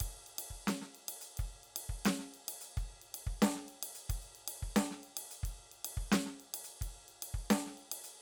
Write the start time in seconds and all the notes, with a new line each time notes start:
0.01 kick, ride
0.27 ride
0.39 ride
0.51 kick
0.68 snare, ride
0.82 snare
0.95 ride
1.09 ride
1.22 closed hi-hat
1.38 kick, ride
1.52 closed hi-hat
1.64 ride
1.77 ride
1.90 kick
2.06 snare, ride
2.20 snare
2.34 ride
2.49 ride
2.61 closed hi-hat
2.78 kick, ride
3.02 ride
3.15 ride
3.27 kick
3.43 snare, ride
3.56 snare
3.69 ride
3.83 ride
3.95 closed hi-hat
4.10 kick, ride
4.22 closed hi-hat
4.36 ride
4.48 ride
4.63 kick
4.77 snare, ride bell
4.91 snare
5.04 ride
5.17 ride
5.31 closed hi-hat
5.44 kick, ride
5.72 ride
5.85 ride
5.98 kick
6.12 snare, ride bell
6.27 snare
6.40 ride
6.55 ride
6.65 closed hi-hat
6.82 kick, ride
6.94 closed hi-hat
7.09 ride
7.23 ride
7.35 kick
7.51 snare, ride
7.67 snare
7.78 ride
7.92 ride
8.04 closed hi-hat